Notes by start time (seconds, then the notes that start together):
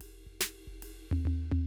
0.00 kick, ride
0.27 kick
0.41 snare, ride
0.67 kick
0.82 ride
1.11 floor tom, high tom
1.25 floor tom, high tom
1.52 floor tom, high tom